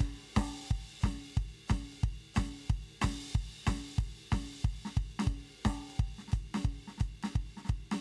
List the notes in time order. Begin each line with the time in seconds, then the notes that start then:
0.01 kick, ride
0.36 kick, snare, hi-hat pedal, ride
0.58 ride
0.70 kick, ride
1.01 kick, snare, hi-hat pedal, ride
1.27 ride
1.37 kick, ride
1.68 kick, snare, hi-hat pedal, ride
1.93 ride
2.04 kick, ride
2.35 kick, snare, hi-hat pedal, ride
2.60 ride
2.70 kick, ride
3.02 kick, snare, hi-hat pedal, ride
3.25 ride
3.35 kick, ride
3.67 kick, snare, hi-hat pedal, ride
3.90 ride
3.99 kick, ride
4.32 kick, snare, hi-hat pedal, ride
4.53 ride
4.63 kick, hi-hat pedal, ride
4.85 snare
4.96 kick, hi-hat pedal, ride
5.20 snare, ride
5.27 kick
5.33 ride
5.65 kick, snare, hi-hat pedal, ride
5.91 ride
6.00 kick, ride
6.19 snare
6.28 snare
6.32 kick, hi-hat pedal, ride
6.55 snare, ride
6.65 kick, ride
6.88 snare
6.98 kick, snare, hi-hat pedal, ride
7.23 snare, ride
7.35 kick, ride
7.57 snare
7.65 snare, hi-hat pedal
7.70 kick, ride
7.92 snare, ride